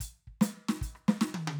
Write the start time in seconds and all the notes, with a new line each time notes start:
0.01 closed hi-hat, kick
0.28 kick
0.42 closed hi-hat, snare
0.69 snare
0.82 closed hi-hat, kick
0.96 cross-stick
1.09 snare
1.21 snare
1.35 high tom
1.48 high tom